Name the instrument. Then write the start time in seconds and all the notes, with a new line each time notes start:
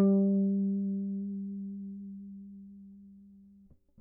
electric guitar
0.00 G3